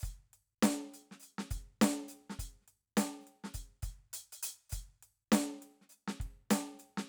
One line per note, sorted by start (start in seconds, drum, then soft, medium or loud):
0.01 kick soft
0.01 hi-hat pedal medium
0.05 closed hi-hat medium
0.34 closed hi-hat soft
0.63 closed hi-hat loud
0.63 snare loud
0.94 closed hi-hat soft
1.12 snare soft
1.20 closed hi-hat soft
1.20 hi-hat pedal soft
1.39 snare medium
1.51 closed hi-hat medium
1.51 kick soft
1.57 kick soft
1.61 kick soft
1.82 closed hi-hat loud
1.82 snare loud
2.09 closed hi-hat soft
2.09 hi-hat pedal medium
2.30 snare soft
2.40 closed hi-hat medium
2.40 kick soft
2.62 snare soft
2.69 closed hi-hat soft
2.98 closed hi-hat loud
2.98 snare medium
3.22 hi-hat pedal soft
3.28 closed hi-hat soft
3.45 snare soft
3.55 closed hi-hat medium
3.55 kick soft
3.83 closed hi-hat medium
3.83 kick soft
3.89 kick soft
4.14 closed hi-hat loud
4.33 closed hi-hat medium
4.43 closed hi-hat loud
4.70 closed hi-hat medium
4.70 kick soft
4.70 hi-hat pedal medium
5.03 closed hi-hat soft
5.33 closed hi-hat loud
5.33 snare loud
5.63 closed hi-hat soft
5.82 snare soft
5.90 closed hi-hat soft
5.90 hi-hat pedal soft
6.08 snare medium
6.21 kick soft
6.21 closed hi-hat soft
6.26 kick soft
6.51 closed hi-hat loud
6.51 snare loud
6.80 closed hi-hat soft
6.80 hi-hat pedal soft
6.98 snare medium